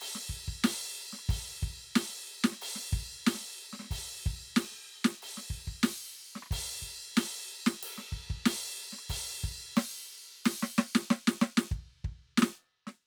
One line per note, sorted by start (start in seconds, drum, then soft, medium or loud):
0.01 crash loud
0.15 snare soft
0.29 kick soft
0.48 kick medium
0.64 snare loud
0.64 crash loud
1.13 snare soft
1.19 cross-stick soft
1.25 kick medium
1.25 snare soft
1.30 crash loud
1.62 kick medium
1.95 snare loud
1.95 crash loud
2.09 snare soft
2.44 snare loud
2.52 snare soft
2.61 crash loud
2.75 snare soft
2.93 kick medium
3.26 snare loud
3.26 crash loud
3.35 snare soft
3.40 snare soft
3.73 snare soft
3.79 snare soft
3.82 snare soft
3.85 snare soft
3.91 kick medium
3.91 crash loud
4.26 kick medium
4.56 snare loud
4.56 crash medium
4.71 snare soft
5.04 snare loud
5.22 crash medium
5.37 snare soft
5.50 kick medium
5.67 kick soft
5.83 snare loud
5.83 crash loud
6.35 snare soft
6.42 cross-stick medium
6.46 cross-stick soft
6.51 kick medium
6.51 crash loud
6.82 kick soft
7.17 snare loud
7.17 crash loud
7.66 snare loud
7.83 crash loud
7.98 snare soft
8.12 kick medium
8.30 kick medium
8.46 snare loud
8.46 crash loud
8.92 snare soft
8.99 cross-stick soft
9.10 kick medium
9.10 crash loud
9.43 kick medium
9.76 snare loud
9.76 crash loud
10.45 snare loud
10.45 crash loud
10.63 snare medium
10.78 snare loud
10.95 snare loud
11.10 snare loud
11.27 snare loud
11.41 snare loud
11.57 snare loud
11.71 kick medium
12.04 kick medium
12.37 snare loud
12.42 snare loud
12.87 snare medium